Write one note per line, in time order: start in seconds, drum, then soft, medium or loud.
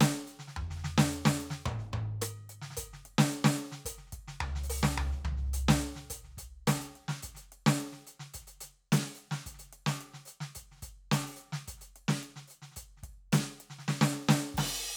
0.01 closed hi-hat loud
0.01 snare loud
0.13 snare soft
0.28 closed hi-hat soft
0.40 snare soft
0.48 snare soft
0.57 kick soft
0.57 mid tom loud
0.63 kick soft
0.71 snare soft
0.77 snare soft
0.84 snare medium
0.98 snare loud
1.12 closed hi-hat medium
1.26 snare loud
1.40 closed hi-hat soft
1.51 snare medium
1.61 hi-hat pedal soft
1.66 kick soft
1.66 high tom loud
1.73 kick soft
1.76 kick soft
1.76 snare soft
1.93 kick soft
1.93 high tom loud
2.01 kick soft
2.22 closed hi-hat loud
2.22 cross-stick medium
2.37 snare soft
2.50 hi-hat pedal soft
2.50 open hi-hat medium
2.62 snare medium
2.71 snare soft
2.77 closed hi-hat loud
2.77 kick medium
2.84 kick soft
2.88 kick soft
2.94 snare soft
3.06 closed hi-hat soft
3.19 snare loud
3.32 closed hi-hat soft
3.45 snare loud
3.59 closed hi-hat soft
3.72 snare medium
3.86 closed hi-hat loud
3.86 kick soft
3.92 kick soft
3.98 snare soft
4.07 snare soft
4.13 kick medium
4.13 closed hi-hat medium
4.19 kick soft
4.28 snare medium
4.41 floor tom loud
4.56 snare soft
4.64 hi-hat pedal medium
4.70 open hi-hat loud
4.83 snare loud
4.83 hi-hat pedal soft
4.98 kick soft
4.98 floor tom loud
5.12 snare soft
5.25 kick soft
5.25 floor tom loud
5.32 kick soft
5.37 snare soft
5.45 snare soft
5.54 closed hi-hat medium
5.69 snare loud
5.82 closed hi-hat soft
5.96 snare soft
6.10 closed hi-hat loud
6.10 kick soft
6.25 snare soft
6.31 snare soft
6.36 closed hi-hat medium
6.36 kick soft
6.36 snare soft
6.47 kick soft
6.68 closed hi-hat loud
6.68 snare loud
6.79 closed hi-hat medium
6.79 snare soft
6.96 closed hi-hat soft
7.09 snare medium
7.23 closed hi-hat medium
7.23 kick soft
7.30 kick soft
7.35 closed hi-hat medium
7.35 snare soft
7.42 snare soft
7.52 closed hi-hat soft
7.67 snare loud
7.81 closed hi-hat soft
7.93 snare soft
8.07 closed hi-hat medium
8.20 snare medium
8.34 closed hi-hat medium
8.34 kick soft
8.42 snare soft
8.47 closed hi-hat medium
8.47 snare soft
8.55 snare soft
8.57 closed hi-hat medium
8.57 snare soft
8.63 snare soft
8.93 closed hi-hat loud
8.93 snare loud
9.01 snare soft
9.07 open hi-hat soft
9.15 closed hi-hat soft
9.15 hi-hat pedal medium
9.32 snare medium
9.42 snare soft
9.42 hi-hat pedal soft
9.47 closed hi-hat medium
9.47 kick soft
9.52 kick soft
9.52 snare soft
9.59 closed hi-hat medium
9.59 snare soft
9.64 snare soft
9.68 snare soft
9.73 closed hi-hat soft
9.87 snare medium
10.01 closed hi-hat soft
10.14 snare soft
10.26 closed hi-hat medium
10.26 hi-hat pedal medium
10.41 snare medium
10.55 closed hi-hat medium
10.55 kick soft
10.72 snare soft
10.76 snare soft
10.80 closed hi-hat medium
10.80 kick soft
10.80 snare soft
10.92 kick soft
11.12 closed hi-hat medium
11.12 snare loud
11.22 snare soft
11.27 open hi-hat medium
11.37 hi-hat pedal medium
11.41 closed hi-hat soft
11.53 snare medium
11.67 closed hi-hat medium
11.67 kick soft
11.67 snare soft
11.74 kick soft
11.78 closed hi-hat medium
11.78 snare soft
11.84 snare soft
11.96 closed hi-hat soft
12.09 snare loud
12.23 closed hi-hat soft
12.36 snare soft
12.48 closed hi-hat soft
12.48 hi-hat pedal soft
12.62 snare soft
12.72 snare soft
12.77 closed hi-hat medium
12.77 kick soft
12.97 snare soft
13.03 kick soft
13.03 closed hi-hat soft
13.10 kick soft
13.13 kick soft
13.33 open hi-hat loud
13.33 snare loud
13.43 snare soft
13.61 hi-hat pedal soft
13.61 open hi-hat medium
13.70 snare soft
13.79 snare soft
13.88 kick soft
13.88 snare loud
14.02 snare loud
14.13 snare soft
14.29 snare loud
14.54 kick medium
14.54 snare loud
14.54 hi-hat pedal soft
14.54 crash loud
14.61 kick soft
14.65 kick soft
14.65 cross-stick medium
14.75 open hi-hat soft